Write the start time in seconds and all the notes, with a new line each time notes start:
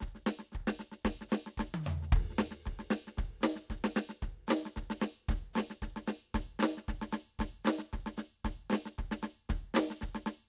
0.01 kick, snare
0.15 snare
0.27 snare, hi-hat pedal
0.39 snare
0.53 kick, snare
0.68 snare
0.79 snare, hi-hat pedal
0.92 snare
1.02 kick, snare, hi-hat pedal
1.21 snare
1.29 snare, hi-hat pedal
1.47 snare
1.58 kick, snare
1.75 high tom
1.84 floor tom, hi-hat pedal
2.03 snare
2.13 kick, ride
2.31 snare
2.38 snare, hi-hat pedal
2.52 snare
2.66 kick, snare
2.79 snare
2.91 snare, hi-hat pedal
3.08 snare
3.18 kick, snare
3.41 snare, hi-hat pedal
3.44 snare
3.56 snare
3.70 kick, snare
3.85 snare
3.95 snare, hi-hat pedal
4.10 snare
4.23 kick, snare
4.48 snare, hi-hat pedal
4.51 snare
4.66 snare
4.77 kick, snare
4.91 snare
5.00 snare, hi-hat pedal
5.29 kick, snare
5.54 snare, hi-hat pedal
5.58 snare
5.71 snare
5.82 kick, snare
5.97 snare
6.07 snare, hi-hat pedal
6.35 kick, snare
6.60 snare, hi-hat pedal
6.63 snare
6.78 snare
6.89 kick, snare
7.02 snare
7.12 snare, hi-hat pedal
7.39 kick, snare
7.65 snare, hi-hat pedal
7.68 snare
7.79 snare
7.93 kick, snare
8.07 snare
8.17 snare, hi-hat pedal
8.45 kick, snare
8.70 snare, hi-hat pedal
8.73 snare
8.86 snare
8.99 kick, snare
9.12 snare
9.23 snare, hi-hat pedal
9.50 kick, snare
9.75 snare, hi-hat pedal
9.77 snare
9.91 snare
10.02 kick, snare
10.15 snare
10.27 snare, hi-hat pedal